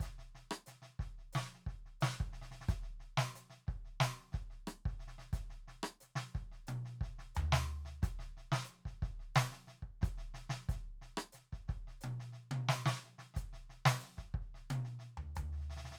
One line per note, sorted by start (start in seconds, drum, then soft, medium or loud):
0.01 kick medium
0.01 snare soft
0.01 hi-hat pedal medium
0.19 snare soft
0.36 snare soft
0.52 cross-stick medium
0.67 snare soft
0.67 hi-hat pedal medium
0.83 snare soft
1.00 kick medium
1.00 snare soft
1.19 snare soft
1.33 snare medium
1.33 hi-hat pedal medium
1.55 snare soft
1.67 kick medium
1.67 snare soft
1.86 snare soft
2.02 snare loud
2.02 hi-hat pedal medium
2.20 kick medium
2.20 snare soft
2.33 snare soft
2.42 snare soft
2.52 snare soft
2.62 snare soft
2.69 kick medium
2.69 snare soft
2.69 hi-hat pedal medium
2.83 snare soft
3.00 snare soft
3.18 snare medium
3.36 snare soft
3.36 hi-hat pedal medium
3.51 snare soft
3.68 kick medium
3.68 snare soft
3.86 snare soft
4.01 snare loud
4.01 hi-hat pedal medium
4.21 snare soft
4.33 kick medium
4.33 snare soft
4.51 snare soft
4.68 cross-stick medium
4.68 hi-hat pedal medium
4.86 kick medium
4.86 snare soft
5.00 snare soft
5.08 snare soft
5.19 snare soft
5.34 kick medium
5.34 snare soft
5.34 hi-hat pedal medium
5.51 snare soft
5.68 snare soft
5.84 cross-stick medium
6.01 snare soft
6.01 hi-hat pedal medium
6.16 snare medium
6.35 kick medium
6.35 snare soft
6.53 snare soft
6.68 hi-hat pedal medium
6.68 high tom loud
6.86 snare soft
7.02 kick medium
7.02 snare soft
7.19 snare soft
7.36 floor tom loud
7.36 hi-hat pedal medium
7.53 snare loud
7.70 snare soft
7.86 snare soft
8.03 kick medium
8.03 snare soft
8.03 hi-hat pedal medium
8.20 snare soft
8.38 snare soft
8.53 snare loud
8.65 hi-hat pedal medium
8.71 snare soft
8.86 kick soft
8.86 snare soft
9.03 kick medium
9.03 snare soft
9.20 snare soft
9.36 snare loud
9.36 hi-hat pedal medium
9.53 snare soft
9.68 snare soft
9.83 kick soft
10.02 kick medium
10.02 snare soft
10.02 hi-hat pedal medium
10.18 snare soft
10.35 snare soft
10.50 snare medium
10.70 kick medium
10.70 snare soft
10.70 hi-hat pedal medium
11.02 snare soft
11.18 cross-stick medium
11.33 snare soft
11.33 hi-hat pedal medium
11.53 kick soft
11.53 snare soft
11.69 kick medium
11.69 snare soft
11.88 snare soft
12.02 hi-hat pedal medium
12.02 high tom loud
12.20 snare soft
12.33 snare soft
12.52 high tom loud
12.69 snare medium
12.69 hi-hat pedal medium
12.87 snare loud
13.05 snare soft
13.19 snare soft
13.35 kick medium
13.35 snare soft
13.35 hi-hat pedal medium
13.54 snare soft
13.70 snare soft
13.86 snare loud
14.00 snare soft
14.00 hi-hat pedal medium
14.18 kick soft
14.18 snare soft
14.35 kick medium
14.41 snare soft
14.55 snare soft
14.71 hi-hat pedal medium
14.71 high tom loud
14.85 snare soft
15.00 snare soft
15.18 floor tom medium
15.36 floor tom loud
15.36 hi-hat pedal medium
15.53 snare soft
15.57 snare soft
15.60 snare soft
15.64 snare soft
15.71 snare soft
15.78 snare soft
15.85 snare soft
15.92 snare soft